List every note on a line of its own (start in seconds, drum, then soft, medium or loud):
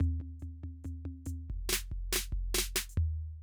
0.00 floor tom loud
0.00 hi-hat pedal soft
0.00 high tom loud
0.20 floor tom medium
0.20 high tom soft
0.40 floor tom medium
0.40 hi-hat pedal soft
0.40 high tom soft
0.63 floor tom medium
0.63 high tom medium
0.84 floor tom medium
0.84 hi-hat pedal soft
0.84 high tom medium
1.05 floor tom medium
1.05 high tom medium
1.26 floor tom medium
1.26 hi-hat pedal medium
1.26 high tom medium
1.50 kick soft
1.69 snare loud
1.73 snare loud
1.92 kick soft
2.13 snare loud
2.16 snare loud
2.32 kick medium
2.54 snare loud
2.58 snare loud
2.76 snare loud
2.89 hi-hat pedal medium
2.97 floor tom loud